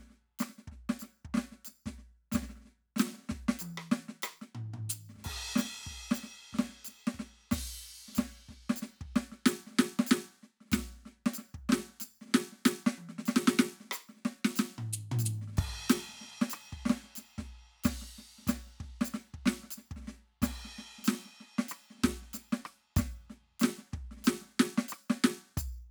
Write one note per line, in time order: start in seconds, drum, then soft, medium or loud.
0.01 snare soft
0.04 snare soft
0.08 snare soft
0.11 snare soft
0.40 cross-stick medium
0.40 snare medium
0.40 percussion loud
0.50 snare soft
0.59 snare soft
0.68 kick soft
0.72 snare soft
0.90 snare medium
1.00 snare soft
1.00 percussion medium
1.26 kick soft
1.35 snare medium
1.38 snare loud
1.53 snare soft
1.66 snare soft
1.66 percussion loud
1.87 kick soft
1.87 snare medium
1.99 snare soft
2.33 kick medium
2.33 snare medium
2.33 percussion loud
2.36 snare loud
2.43 snare soft
2.50 snare soft
2.57 snare soft
2.61 snare soft
2.66 kick soft
2.66 snare soft
2.97 snare medium
2.97 percussion loud
3.00 snare loud
3.08 snare soft
3.14 snare soft
3.19 snare soft
3.24 snare soft
3.30 kick medium
3.30 snare medium
3.49 snare loud
3.60 high tom medium
3.60 percussion loud
3.78 high tom medium
3.92 snare loud
4.09 snare soft
4.23 high tom loud
4.23 percussion loud
4.42 snare soft
4.56 floor tom medium
4.74 floor tom medium
4.90 percussion loud
4.90 floor tom loud
5.10 snare soft
5.15 kick soft
5.15 snare soft
5.19 snare soft
5.22 snare soft
5.22 ride loud
5.27 kick medium
5.56 snare loud
5.56 percussion loud
5.59 snare loud
5.65 snare soft
5.73 snare soft
5.76 snare soft
5.87 kick soft
5.87 snare soft
6.12 snare loud
6.12 percussion loud
6.24 snare soft
6.53 kick soft
6.53 snare medium
6.60 snare loud
6.64 kick soft
6.64 snare soft
6.69 snare soft
6.76 snare soft
6.85 snare soft
6.85 percussion loud
7.08 snare medium
7.15 kick soft
7.20 snare medium
7.52 kick medium
7.52 snare medium
7.52 percussion loud
7.52 crash loud
8.09 snare soft
8.12 snare soft
8.15 snare soft
8.15 percussion loud
8.17 kick soft
8.17 snare soft
8.19 snare loud
8.39 snare soft
8.49 kick soft
8.49 snare soft
8.70 snare loud
8.77 percussion loud
8.83 snare medium
9.02 kick soft
9.17 snare loud
9.33 snare soft
9.47 snare loud
9.47 percussion loud
9.67 snare soft
9.72 snare soft
9.75 snare soft
9.78 snare soft
9.80 snare loud
10.00 snare loud
10.07 percussion loud
10.12 snare loud
10.44 snare soft
10.61 snare soft
10.66 snare soft
10.69 snare soft
10.72 kick medium
10.72 snare soft
10.72 snare loud
10.72 percussion loud
10.79 snare soft
10.94 snare soft
10.97 snare soft
11.00 snare soft
11.03 snare soft
11.06 snare soft
11.27 snare loud
11.35 percussion loud
11.39 snare soft
11.55 kick soft
11.70 snare loud
11.73 snare loud
11.78 snare soft
11.89 snare soft
12.01 snare soft
12.01 percussion loud
12.10 snare soft
12.22 snare soft
12.26 snare soft
12.29 snare soft
12.35 snare loud
12.53 snare soft
12.59 snare soft
12.62 snare soft
12.64 snare soft
12.66 snare loud
12.66 percussion loud
12.87 snare loud
12.99 high tom medium
13.10 snare soft
13.19 snare medium
13.26 snare loud
13.26 percussion loud
13.37 snare loud
13.48 snare loud
13.60 snare loud
13.81 snare soft
13.83 snare soft
13.86 snare soft
13.90 snare soft
13.90 high tom loud
13.90 percussion loud
14.10 snare soft
14.14 snare soft
14.17 snare soft
14.21 snare soft
14.25 snare soft
14.25 snare medium
14.45 snare loud
14.57 snare loud
14.57 percussion loud
14.79 floor tom medium
14.94 floor tom loud
15.12 floor tom loud
15.20 percussion loud
15.26 floor tom loud
15.39 kick soft
15.39 snare soft
15.48 snare soft
15.53 snare soft
15.56 kick loud
15.56 snare soft
15.56 ride loud
15.60 snare soft
15.90 snare loud
15.90 percussion loud
16.09 snare soft
16.14 snare soft
16.18 snare soft
16.21 snare soft
16.42 snare loud
16.51 cross-stick medium
16.51 percussion loud
16.73 kick soft
16.86 snare medium
16.90 snare loud
17.04 snare soft
17.16 snare soft
17.16 percussion loud
17.39 kick medium
17.39 snare medium
17.85 kick medium
17.85 snare loud
17.85 percussion loud
17.85 crash medium
18.02 snare soft
18.19 snare soft
18.39 snare soft
18.43 snare soft
18.48 kick medium
18.48 snare loud
18.48 percussion loud
18.53 snare soft
18.67 snare soft
18.71 snare soft
18.81 kick medium
18.81 snare soft
18.87 snare soft
19.02 snare loud
19.02 percussion loud
19.15 snare medium
19.35 kick soft
19.47 snare loud
19.48 snare loud
19.64 snare soft
19.72 percussion loud
19.78 snare soft
19.92 kick medium
19.97 snare soft
20.01 snare soft
20.04 snare soft
20.08 snare medium
20.13 snare soft
20.43 kick medium
20.43 snare loud
20.43 percussion loud
20.43 ride medium
20.65 snare soft
20.79 snare soft
20.99 snare soft
21.03 snare soft
21.03 percussion loud
21.07 snare soft
21.09 snare loud
21.26 snare soft
21.41 snare soft
21.59 snare loud
21.69 cross-stick medium
21.69 percussion loud
21.91 snare soft
21.96 snare soft
21.99 snare soft
22.04 kick medium
22.04 snare loud
22.09 snare soft
22.22 snare soft
22.27 snare soft
22.30 snare soft
22.30 percussion loud
22.35 snare soft
22.53 snare loud
22.66 cross-stick medium
22.97 kick loud
22.97 snare medium
22.97 percussion loud
23.31 snare soft
23.60 snare medium
23.60 percussion loud
23.64 snare loud
23.68 snare medium
23.79 snare soft
23.94 kick medium
23.94 snare soft
24.12 snare soft
24.17 snare soft
24.21 snare soft
24.25 snare soft
24.25 percussion loud
24.28 snare loud
24.42 snare soft
24.46 snare soft
24.49 snare soft
24.52 snare soft
24.58 snare soft
24.60 snare loud
24.78 snare loud
24.89 cross-stick medium
24.89 percussion loud
25.11 snare loud
25.25 snare loud
25.58 kick medium
25.58 percussion loud